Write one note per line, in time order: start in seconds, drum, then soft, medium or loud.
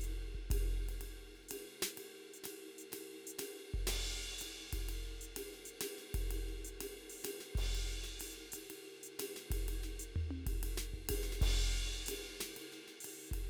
0.01 hi-hat pedal medium
0.01 ride soft
0.35 kick soft
0.50 kick medium
0.50 open hi-hat medium
0.50 ride medium
0.89 ride medium
1.01 ride medium
1.35 snare soft
1.40 snare soft
1.43 snare soft
1.49 hi-hat pedal medium
1.49 ride medium
1.82 snare medium
1.82 ride medium
1.97 ride medium
2.33 hi-hat pedal medium
2.44 snare soft
2.44 ride medium
2.78 hi-hat pedal medium
2.92 snare soft
2.92 ride medium
3.27 hi-hat pedal loud
3.39 snare soft
3.39 ride loud
3.74 kick soft
3.87 snare medium
3.87 ride medium
4.38 hi-hat pedal loud
4.38 ride medium
4.60 snare soft
4.73 kick soft
4.73 ride medium
4.82 hi-hat pedal soft
4.89 ride medium
5.04 snare soft
5.21 hi-hat pedal medium
5.36 snare soft
5.36 ride medium
5.53 snare soft
5.65 hi-hat pedal medium
5.81 snare medium
5.81 ride loud
5.88 hi-hat pedal soft
5.98 snare soft
6.14 kick soft
6.14 ride medium
6.31 ride medium
6.48 snare soft
6.65 hi-hat pedal medium
6.80 snare soft
6.80 ride medium
7.09 hi-hat pedal medium
7.24 snare soft
7.24 ride loud
7.40 snare soft
7.55 kick soft
7.55 ride medium
7.75 ride medium
7.88 snare soft
8.04 snare soft
8.19 hi-hat pedal loud
8.19 ride medium
8.36 snare soft
8.52 hi-hat pedal loud
8.52 ride medium
8.70 ride medium
8.84 snare soft
9.03 hi-hat pedal medium
9.19 snare soft
9.19 ride loud
9.36 snare soft
9.51 kick soft
9.51 ride medium
9.68 ride medium
9.83 snare soft
9.99 hi-hat pedal loud
10.16 floor tom medium
10.30 high tom medium
10.46 kick soft
10.46 ride medium
10.63 ride medium
10.77 snare medium
10.94 kick soft
11.09 kick soft
11.09 ride loud
11.23 snare soft
11.32 snare soft
11.41 kick medium
11.41 ride medium
11.94 snare soft
12.06 hi-hat pedal loud
12.06 ride loud
12.40 snare medium
12.40 ride medium
12.54 hi-hat pedal soft
12.54 ride medium
12.72 snare soft
12.88 snare soft
13.00 hi-hat pedal medium
13.04 ride medium
13.19 snare soft
13.31 kick soft
13.31 ride medium